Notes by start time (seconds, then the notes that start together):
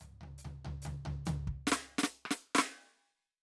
0.00 floor tom, hi-hat pedal
0.21 floor tom, high tom
0.38 hi-hat pedal
0.44 floor tom, high tom
0.65 floor tom, high tom
0.82 hi-hat pedal, high tom
0.86 floor tom
1.05 floor tom, high tom
1.25 floor tom, hi-hat pedal, high tom
1.47 kick
1.67 snare
1.72 snare
1.98 snare, hi-hat pedal
2.03 snare
2.25 cross-stick
2.31 snare
2.55 snare
2.58 snare